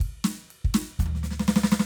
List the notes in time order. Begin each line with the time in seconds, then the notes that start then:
0.01 kick, ride
0.25 snare, ride
0.51 ride
0.65 kick
0.75 snare, ride
1.00 kick, floor tom, hi-hat pedal
1.06 high tom
1.16 snare
1.24 snare, hi-hat pedal
1.31 snare
1.40 snare
1.48 snare, hi-hat pedal
1.56 snare
1.64 snare
1.71 snare, hi-hat pedal
1.80 snare